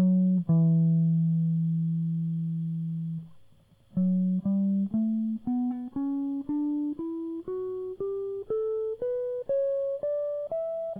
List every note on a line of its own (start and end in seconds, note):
0.00 0.43 F#3
0.50 3.23 E3
3.97 4.42 F#3
4.46 4.89 G3
4.94 5.39 A3
5.47 5.92 B3
5.96 6.45 C#4
6.49 6.96 D4
6.99 7.44 E4
7.48 7.96 F#4
8.00 8.46 G4
8.50 8.96 A4
9.02 9.44 B4
9.49 10.01 C#5
10.03 10.49 D5
10.51 10.95 E5